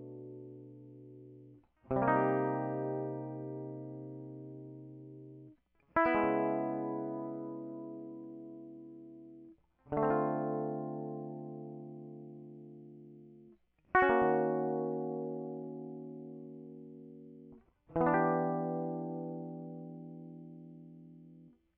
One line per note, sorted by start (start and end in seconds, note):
1.92 5.52 C3
1.97 5.55 G3
2.02 5.52 A#3
2.08 5.56 D#4
5.96 9.55 E4
6.06 9.52 B3
6.15 9.57 G#3
6.24 9.51 C#3
9.93 13.51 D3
9.97 13.57 A3
10.03 13.53 C4
10.10 13.56 F4
13.95 17.59 F#4
14.02 17.58 C#4
14.10 17.62 A#3
14.23 17.52 D#3
17.96 21.51 E3
18.01 21.57 B3
18.06 21.54 D4
18.14 20.91 G4